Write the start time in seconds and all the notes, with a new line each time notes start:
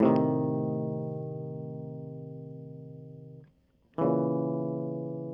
0.01 A2 C3
0.06 D#3
3.99 C#3 E3
4.05 A#2